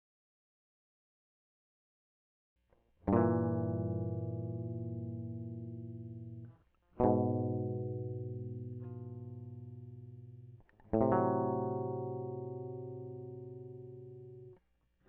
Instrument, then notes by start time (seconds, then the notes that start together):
electric guitar
3.10 G2 A#2
3.16 E3
7.01 B2
7.05 G#2
10.86 A2
10.94 A2
11.01 C3
11.12 F#3